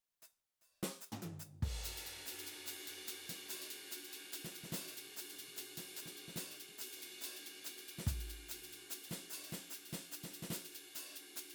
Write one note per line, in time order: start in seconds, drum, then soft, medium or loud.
0.22 hi-hat pedal medium
0.61 hi-hat pedal soft
0.83 snare medium
1.01 hi-hat pedal medium
1.12 floor tom medium
1.22 high tom medium
1.39 hi-hat pedal medium
1.62 kick medium
1.62 crash medium
1.62 ride medium
1.84 hi-hat pedal medium
1.84 ride loud
1.97 ride medium
2.04 hi-hat pedal soft
2.04 ride medium
2.16 snare soft
2.24 snare soft
2.24 hi-hat pedal medium
2.24 ride loud
2.39 ride medium
2.45 hi-hat pedal soft
2.45 ride medium
2.66 hi-hat pedal medium
2.66 ride loud
2.86 hi-hat pedal soft
2.86 ride medium
3.07 hi-hat pedal medium
3.07 ride loud
3.27 snare soft
3.27 hi-hat pedal soft
3.27 ride loud
3.49 hi-hat pedal medium
3.49 ride loud
3.54 snare soft
3.62 ride medium
3.69 hi-hat pedal soft
3.69 ride medium
3.91 hi-hat pedal medium
3.91 ride loud
4.04 ride medium
4.11 hi-hat pedal soft
4.11 ride medium
4.24 snare soft
4.32 hi-hat pedal medium
4.32 ride loud
4.44 snare soft
4.44 ride medium
4.52 hi-hat pedal soft
4.52 ride medium
4.63 snare soft
4.72 snare medium
4.72 hi-hat pedal loud
4.72 ride loud
4.88 ride medium
4.92 hi-hat pedal soft
4.97 ride medium
5.07 snare soft
5.16 hi-hat pedal loud
5.16 ride loud
5.29 ride medium
5.35 hi-hat pedal soft
5.35 ride medium
5.48 snare soft
5.56 hi-hat pedal medium
5.56 ride loud
5.75 snare soft
5.75 hi-hat pedal soft
5.75 ride loud
5.96 hi-hat pedal medium
5.96 ride medium
6.06 snare soft
6.06 ride medium
6.17 ride medium
6.28 snare soft
6.36 snare medium
6.36 hi-hat pedal medium
6.36 ride medium
6.51 ride medium
6.55 hi-hat pedal soft
6.60 ride medium
6.69 snare soft
6.78 snare soft
6.78 hi-hat pedal loud
6.78 ride loud
6.93 ride medium
6.98 hi-hat pedal soft
6.98 ride medium
7.13 snare soft
7.21 hi-hat pedal medium
7.21 ride loud
7.36 ride medium
7.46 ride medium
7.64 hi-hat pedal loud
7.64 ride medium
7.78 ride medium
7.88 ride medium
7.98 snare medium
8.07 kick medium
8.07 hi-hat pedal medium
8.07 ride medium
8.20 ride medium
8.27 hi-hat pedal soft
8.27 ride medium
8.41 snare soft
8.49 hi-hat pedal medium
8.49 ride loud
8.63 ride medium
8.68 hi-hat pedal soft
8.72 ride medium
8.90 hi-hat pedal loud
8.90 ride loud
9.04 ride medium
9.09 snare medium
9.09 hi-hat pedal soft
9.09 ride medium
9.30 hi-hat pedal loud
9.30 ride medium
9.44 ride medium
9.50 snare medium
9.50 hi-hat pedal soft
9.54 ride medium
9.70 hi-hat pedal loud
9.70 ride medium
9.85 ride medium
9.89 snare medium
9.89 hi-hat pedal soft
9.94 ride medium
10.12 hi-hat pedal loud
10.12 ride medium
10.23 snare soft
10.23 ride medium
10.31 hi-hat pedal soft
10.31 ride medium
10.42 snare medium
10.50 snare medium
10.50 hi-hat pedal loud
10.50 ride medium
10.65 ride medium
10.71 hi-hat pedal soft
10.71 ride medium
10.95 hi-hat pedal loud
10.95 ride medium
11.16 ride medium
11.36 hi-hat pedal loud
11.36 ride medium
11.50 ride medium